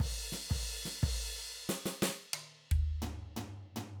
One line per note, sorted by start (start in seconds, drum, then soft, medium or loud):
0.01 kick medium
0.01 crash loud
0.32 snare medium
0.49 kick medium
0.49 crash loud
0.85 snare medium
1.02 kick medium
1.02 crash loud
1.69 snare loud
1.86 snare medium
2.02 snare loud
2.09 snare soft
2.33 high tom loud
2.71 mid tom loud
3.02 floor tom loud
3.36 floor tom loud
3.76 floor tom loud